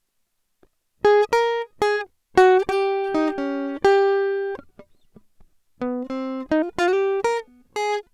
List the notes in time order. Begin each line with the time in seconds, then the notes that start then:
1.06 G#4
1.34 A#4
1.83 G#4
2.39 F#4
2.70 G4
3.16 D#4
3.39 C#4
3.86 G4
5.83 B3
6.11 C4
6.53 D#4
6.80 F4
6.94 G4
7.25 A#4
7.77 G#4